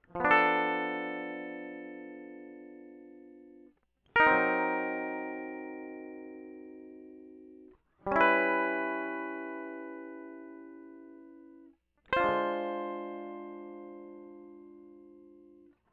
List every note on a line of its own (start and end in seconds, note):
0.16 3.71 F3
0.21 3.74 B3
0.25 3.72 D4
0.31 2.64 A4
4.16 6.64 A#4
4.20 7.74 D#4
4.27 7.76 C4
4.32 7.77 F#3
8.07 11.26 G3
8.12 11.75 C#4
8.16 11.75 E4
8.21 10.85 B4
12.13 15.73 F4
12.13 14.61 C5
12.21 15.77 D4
12.25 15.70 G#3